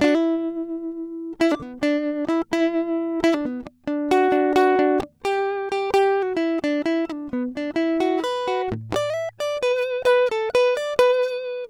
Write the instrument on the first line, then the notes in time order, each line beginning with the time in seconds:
acoustic guitar
0.02 D4
0.15 E4
1.42 E4
1.52 D4
1.61 B3
1.84 D4
2.30 E4
2.54 E4
3.25 E4
3.35 D4
3.47 B3
3.88 D4
4.12 F#4
4.33 D4
4.57 F#4
4.80 D4
5.26 G4
5.73 G4
5.95 G4
6.24 F#4
6.38 E4
6.65 D4
6.87 E4
7.11 D4
7.34 B3
7.58 D4
7.77 E4
8.01 F#4
8.25 B4
8.48 F#4
8.73 A2
8.97 D5
9.11 E5
9.41 D5
9.63 B4
10.06 B4
10.33 A4
10.55 B4
10.76 D5
11.00 B4